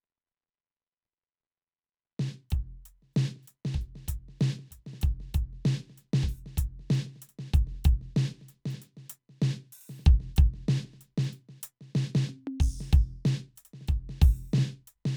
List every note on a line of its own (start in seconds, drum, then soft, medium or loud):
2.19 snare medium
2.50 closed hi-hat medium
2.50 kick medium
2.85 closed hi-hat medium
3.02 snare soft
3.13 snare loud
3.13 hi-hat pedal soft
3.36 snare soft
3.43 hi-hat pedal soft
3.48 closed hi-hat medium
3.65 snare medium
3.74 kick medium
3.81 closed hi-hat soft
3.96 snare soft
4.08 closed hi-hat loud
4.08 kick medium
4.29 snare soft
4.40 snare loud
4.40 hi-hat pedal soft
4.59 snare soft
4.68 kick soft
4.68 snare soft
4.72 closed hi-hat medium
4.86 snare soft
4.93 snare soft
5.01 closed hi-hat medium
5.01 kick medium
5.20 snare soft
5.34 closed hi-hat medium
5.34 kick medium
5.53 snare soft
5.65 snare loud
5.81 snare soft
5.90 snare soft
5.98 closed hi-hat soft
6.13 snare loud
6.23 kick medium
6.29 open hi-hat soft
6.38 hi-hat pedal soft
6.46 snare soft
6.57 closed hi-hat loud
6.57 kick medium
6.79 snare soft
6.90 snare loud
6.90 hi-hat pedal soft
7.07 snare soft
7.16 snare soft
7.22 closed hi-hat medium
7.29 closed hi-hat soft
7.39 snare medium
7.54 kick loud
7.54 closed hi-hat medium
7.67 snare soft
7.75 snare soft
7.84 closed hi-hat medium
7.84 kick loud
8.01 snare soft
8.16 snare loud
8.32 snare soft
8.41 snare soft
8.49 closed hi-hat soft
8.66 snare medium
8.70 hi-hat pedal medium
8.74 snare soft
8.82 closed hi-hat medium
8.97 snare soft
9.10 closed hi-hat loud
9.29 snare soft
9.42 snare loud
9.55 snare soft
9.60 snare soft
9.63 snare soft
9.72 open hi-hat medium
9.81 open hi-hat soft
9.89 snare soft
10.05 kick loud
10.05 hi-hat pedal soft
10.05 open hi-hat soft
10.20 snare soft
10.36 closed hi-hat medium
10.36 kick loud
10.54 snare soft
10.68 snare loud
10.84 snare soft
10.94 snare soft
11.01 closed hi-hat soft
11.18 snare loud
11.23 hi-hat pedal soft
11.33 open hi-hat soft
11.49 snare soft
11.61 closed hi-hat loud
11.61 hi-hat pedal soft
11.81 snare soft
11.95 snare loud
12.15 snare loud
12.27 hi-hat pedal soft
12.27 high tom medium
12.47 high tom loud
12.60 kick medium
12.60 crash medium
12.81 snare medium
12.93 kick loud
12.93 closed hi-hat medium
13.25 snare loud
13.25 hi-hat pedal soft
13.48 snare soft
13.56 closed hi-hat medium
13.56 hi-hat pedal soft
13.65 closed hi-hat soft
13.74 snare soft
13.81 snare soft
13.88 kick medium
13.88 closed hi-hat soft
14.09 snare soft
14.22 kick loud
14.22 open hi-hat medium
14.53 snare loud
14.58 snare medium
14.87 closed hi-hat medium
15.05 snare loud